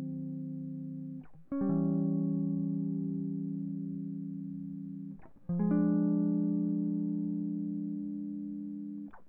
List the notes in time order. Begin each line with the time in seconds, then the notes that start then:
1.52 C#4
1.61 G3
1.70 E3
5.50 F3
5.60 G#3
5.71 D4